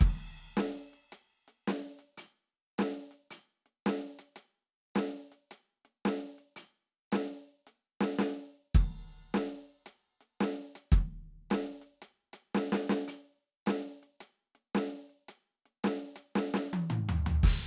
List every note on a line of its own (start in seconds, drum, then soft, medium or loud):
0.01 kick loud
0.01 hi-hat pedal loud
0.01 crash medium
0.58 snare loud
0.58 closed hi-hat loud
0.94 closed hi-hat soft
1.13 closed hi-hat loud
1.49 closed hi-hat medium
1.68 snare loud
1.68 closed hi-hat loud
2.00 closed hi-hat medium
2.18 closed hi-hat loud
2.79 snare loud
2.79 closed hi-hat loud
3.12 closed hi-hat medium
3.31 closed hi-hat loud
3.67 closed hi-hat soft
3.87 snare loud
3.87 closed hi-hat loud
4.20 closed hi-hat loud
4.37 closed hi-hat loud
4.96 snare loud
4.96 closed hi-hat loud
5.33 closed hi-hat medium
5.52 closed hi-hat loud
5.86 closed hi-hat soft
6.06 snare loud
6.06 closed hi-hat loud
6.39 closed hi-hat soft
6.57 closed hi-hat loud
7.13 snare loud
7.13 closed hi-hat loud
7.68 closed hi-hat medium
8.01 snare loud
8.19 snare loud
8.75 kick loud
8.75 crash loud
9.35 snare loud
9.35 closed hi-hat loud
9.87 closed hi-hat loud
10.22 closed hi-hat medium
10.41 snare loud
10.41 closed hi-hat loud
10.76 closed hi-hat loud
10.93 kick loud
10.93 closed hi-hat loud
11.51 snare loud
11.51 closed hi-hat loud
11.82 closed hi-hat medium
12.03 closed hi-hat loud
12.34 closed hi-hat loud
12.55 snare loud
12.73 snare loud
12.90 snare loud
13.09 closed hi-hat loud
13.67 snare loud
13.67 closed hi-hat loud
14.04 closed hi-hat soft
14.21 closed hi-hat loud
14.56 closed hi-hat soft
14.76 snare loud
14.76 closed hi-hat loud
15.10 closed hi-hat soft
15.29 closed hi-hat loud
15.66 closed hi-hat soft
15.85 snare loud
15.85 closed hi-hat loud
16.17 closed hi-hat loud
16.36 snare loud
16.55 snare loud
16.74 high tom loud
16.91 mid tom loud
17.10 floor tom loud
17.27 floor tom loud
17.44 kick loud
17.44 ride loud
17.44 crash loud